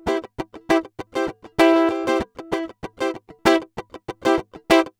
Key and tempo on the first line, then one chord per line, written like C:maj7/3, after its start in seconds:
C major, 97 BPM
0.00 C:maj/3